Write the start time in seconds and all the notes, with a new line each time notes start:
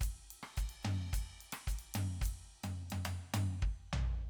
0.01 kick, hi-hat pedal, ride
0.31 ride
0.43 cross-stick, ride
0.57 kick, hi-hat pedal
0.69 ride
0.83 high tom, ride
1.13 kick, hi-hat pedal, ride
1.41 ride
1.53 cross-stick, ride
1.67 kick, hi-hat pedal
1.79 ride
1.94 high tom, ride
2.22 kick, hi-hat pedal
2.26 ride
2.64 high tom, ride bell
2.90 high tom, ride bell
3.05 high tom, ride bell
3.34 high tom, ride bell
3.62 kick
3.93 floor tom